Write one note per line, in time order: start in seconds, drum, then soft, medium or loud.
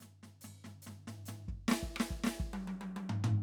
0.00 snare soft
0.00 floor tom soft
0.00 hi-hat pedal soft
0.23 snare soft
0.23 floor tom soft
0.41 snare soft
0.41 floor tom soft
0.41 hi-hat pedal medium
0.64 snare soft
0.64 floor tom soft
0.82 hi-hat pedal medium
0.86 snare soft
0.86 floor tom soft
1.07 snare soft
1.07 floor tom medium
1.25 snare soft
1.25 floor tom medium
1.25 hi-hat pedal medium
1.48 kick soft
1.68 snare loud
1.71 snare loud
1.83 kick soft
1.96 cross-stick medium
1.96 snare medium
2.10 kick soft
2.24 snare medium
2.27 snare medium
2.40 kick soft
2.53 high tom medium
2.67 high tom medium
2.81 high tom medium
2.96 high tom medium
3.09 floor tom loud
3.24 floor tom loud